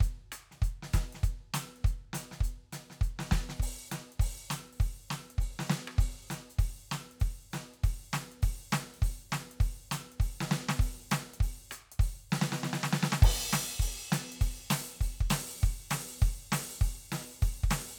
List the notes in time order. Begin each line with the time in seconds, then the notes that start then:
0.01 closed hi-hat, kick
0.33 closed hi-hat, cross-stick
0.52 snare, closed hi-hat
0.62 closed hi-hat, kick
0.83 snare
0.94 closed hi-hat, kick, snare
1.13 snare, closed hi-hat
1.24 closed hi-hat, kick
1.54 closed hi-hat, snare
1.77 closed hi-hat
1.85 closed hi-hat, kick
2.14 closed hi-hat, snare
2.32 snare, closed hi-hat
2.41 closed hi-hat, kick
2.73 closed hi-hat, snare
2.91 snare, closed hi-hat
3.02 closed hi-hat, kick
3.20 snare
3.32 kick, snare
3.50 snare
3.60 open hi-hat, kick
3.88 hi-hat pedal
3.92 snare, closed hi-hat
4.13 closed hi-hat
4.20 open hi-hat, kick
4.48 closed hi-hat, snare, hi-hat pedal
4.73 open hi-hat
4.80 open hi-hat, kick
5.08 closed hi-hat, snare, hi-hat pedal
5.31 closed hi-hat
5.39 open hi-hat, kick
5.60 snare
5.67 snare, hi-hat pedal
5.88 cross-stick
5.99 open hi-hat, kick
6.28 closed hi-hat, snare, hi-hat pedal
6.50 closed hi-hat
6.59 open hi-hat, kick
6.89 closed hi-hat, snare, hi-hat pedal
7.12 closed hi-hat
7.21 open hi-hat, kick
7.51 closed hi-hat, snare, hi-hat pedal
7.74 closed hi-hat
7.84 open hi-hat, kick
8.12 closed hi-hat, snare, hi-hat pedal
8.32 closed hi-hat
8.43 open hi-hat, kick
8.70 closed hi-hat, snare, hi-hat pedal
8.94 open hi-hat
9.03 open hi-hat, kick
9.30 closed hi-hat, snare, hi-hat pedal
9.52 closed hi-hat
9.61 open hi-hat, kick
9.89 closed hi-hat, snare, hi-hat pedal
10.12 closed hi-hat
10.20 open hi-hat, kick
10.41 snare
10.49 snare, hi-hat pedal
10.69 snare
10.80 open hi-hat, kick
11.10 snare, closed hi-hat, hi-hat pedal
11.34 closed hi-hat
11.41 open hi-hat, kick
11.70 closed hi-hat, cross-stick, hi-hat pedal
11.92 closed hi-hat
12.00 open hi-hat, kick
12.30 snare, hi-hat pedal
12.42 snare
12.53 snare
12.58 hi-hat pedal
12.64 snare
12.74 snare
12.84 snare, hi-hat pedal
12.93 snare
13.13 snare
13.23 kick, crash
13.53 open hi-hat, snare
13.60 snare
13.80 open hi-hat, kick
14.09 snare, hi-hat pedal
14.13 closed hi-hat
14.33 closed hi-hat
14.41 open hi-hat, kick
14.71 open hi-hat, snare
14.93 open hi-hat
15.01 open hi-hat, kick
15.21 kick
15.30 open hi-hat, snare
15.52 open hi-hat
15.62 open hi-hat, kick
15.91 open hi-hat, snare
16.11 open hi-hat
16.22 open hi-hat, kick
16.52 open hi-hat, snare
16.74 open hi-hat
16.82 open hi-hat, kick
17.12 open hi-hat, snare
17.32 open hi-hat
17.42 open hi-hat, kick
17.64 kick
17.71 open hi-hat, snare
17.90 open hi-hat